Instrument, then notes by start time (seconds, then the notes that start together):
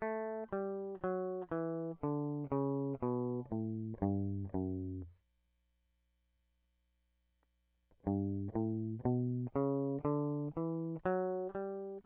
electric guitar
0.03 A3
0.53 G3
1.05 F#3
1.52 E3
2.05 D3
2.53 C#3
3.04 B2
3.54 A2
4.06 G2
4.56 F#2
8.09 G2
8.57 A2
9.08 B2
9.57 C#3
10.06 D3
10.58 E3
11.06 F#3
11.56 G3